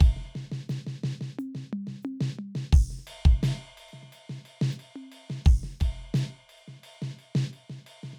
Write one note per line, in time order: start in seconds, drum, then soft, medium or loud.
0.01 kick loud
0.01 ride medium
0.17 snare soft
0.36 snare medium
0.52 snare medium
0.69 snare medium
0.69 hi-hat pedal soft
0.87 snare medium
1.04 snare loud
1.21 snare medium
1.39 hi-hat pedal medium
1.39 high tom loud
1.55 snare medium
1.73 mid tom loud
1.87 snare medium
2.03 hi-hat pedal soft
2.03 high tom loud
2.21 snare loud
2.39 mid tom loud
2.56 snare medium
2.73 kick loud
2.73 crash medium
2.91 snare soft
2.99 snare soft
3.07 ride medium
3.25 kick loud
3.43 snare loud
3.43 ride medium
3.78 ride medium
3.89 ride soft
3.94 snare soft
4.03 snare soft
4.12 hi-hat pedal medium
4.12 ride medium
4.30 snare medium
4.46 ride medium
4.62 snare loud
4.72 hi-hat pedal medium
4.80 ride medium
4.96 high tom medium
5.12 ride medium
5.30 snare medium
5.45 kick loud
5.45 crash medium
5.64 snare soft
5.81 kick medium
5.81 ride medium
6.14 snare loud
6.14 hi-hat pedal medium
6.14 ride medium
6.50 ride soft
6.58 ride soft
6.68 snare soft
6.84 ride medium
6.93 hi-hat pedal soft
7.02 snare medium
7.19 ride soft
7.36 snare loud
7.53 ride soft
7.70 snare medium
7.87 ride medium
8.04 snare medium